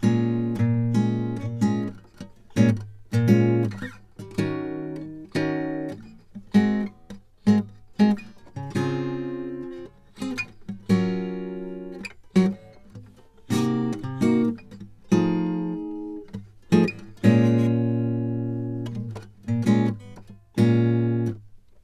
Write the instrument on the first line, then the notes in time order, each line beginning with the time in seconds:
acoustic guitar
0.03 A#2 G#3 C#4 F4
0.61 A#2
0.95 G#3 C#4 F4
1.38 A#2
1.62 G#3 C#4 F4
2.57 A#2 G#3 C#4 F4
3.14 A#2
3.29 G#3 C#4 F4
4.39 D#3 C#4 F#4 A#4
5.36 D#3 C#4 F#4 A#4
6.55 G#3 C4 F#4 A#4
7.47 G#3 C4 F#4 A#4
8.00 G#3 C4 F#4 A#4
8.57 C#3
8.76 C#3 C4 F4 G#4
10.20 C4 F4 G#4
10.90 F#3 C#4 F4 A#4
12.36 F#3 C#4 F4 A#4
13.51 C3 A#3 D#4 F#4
14.04 C3
14.22 A#3 D#4 F#4
15.12 F3 A3 D#4 G#4
16.73 F3 A3 D#4 G#4
17.25 A#2 G#3 C#4 F4
19.49 A#2
19.67 A#2 G#3 C#4 F4
20.59 A#2 G#3 C#4 F4